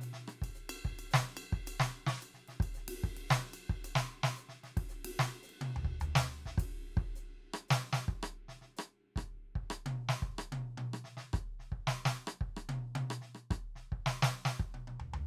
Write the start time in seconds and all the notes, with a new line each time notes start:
0.01 hi-hat pedal, ride
0.13 snare
0.28 cross-stick, ride
0.42 kick, ride bell
0.55 hi-hat pedal
0.69 ride bell
0.85 kick
0.99 ride bell
1.11 snare, hi-hat pedal
1.37 ride bell
1.53 kick
1.67 hi-hat pedal, ride bell
1.80 snare
2.07 snare
2.20 hi-hat pedal, ride bell
2.32 kick, snare
2.48 snare, ride
2.60 kick, ride bell
2.74 snare, hi-hat pedal
2.88 ride
3.04 kick
3.17 ride
3.29 snare, hi-hat pedal
3.54 ride bell
3.70 kick
3.85 hi-hat pedal, ride bell
3.95 snare
4.23 snare
4.37 hi-hat pedal, ride bell
4.49 snare
4.64 snare, ride bell
4.77 kick, ride
4.89 snare, hi-hat pedal
5.05 ride
5.19 snare
5.35 ride
5.43 hi-hat pedal
5.49 ride
5.61 high tom
5.67 hi-hat pedal
5.76 floor tom
5.85 kick
6.00 floor tom, hi-hat pedal
6.15 snare
6.46 kick, snare
6.58 kick, hi-hat pedal, ride
6.97 kick
7.16 hi-hat pedal
7.54 cross-stick
7.68 snare, hi-hat pedal
7.93 snare
8.05 kick, snare
8.23 cross-stick
8.49 snare
8.61 snare
8.77 cross-stick, hi-hat pedal
9.16 kick, cross-stick
9.56 kick
9.70 cross-stick
9.86 high tom
10.09 snare
10.22 kick
10.38 cross-stick
10.52 high tom
10.78 high tom
10.94 cross-stick
11.04 snare
11.17 snare
11.33 kick, cross-stick
11.60 snare
11.72 kick
11.87 snare
12.05 snare
12.27 cross-stick
12.41 kick
12.57 cross-stick
12.69 high tom
12.95 high tom
13.10 cross-stick
13.21 snare
13.35 cross-stick
13.51 kick, cross-stick
13.76 snare
13.92 kick
14.06 snare
14.22 snare
14.45 snare
14.60 kick
14.74 high tom
14.87 high tom
15.00 floor tom
15.14 floor tom